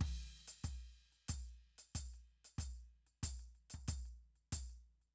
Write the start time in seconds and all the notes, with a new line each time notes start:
0.01 kick, crash
0.16 percussion
0.27 percussion
0.48 percussion
0.64 kick, percussion
0.80 percussion
0.98 percussion
1.13 percussion
1.29 kick, percussion
1.46 percussion
1.79 percussion
1.95 kick, percussion
2.14 percussion
2.28 percussion
2.45 percussion
2.59 kick, percussion
2.76 percussion
3.07 percussion
3.23 kick, percussion
3.40 percussion
3.56 percussion
3.70 kick, percussion
3.88 kick, percussion
4.06 percussion
4.36 percussion
4.53 kick, percussion
4.70 percussion
5.02 percussion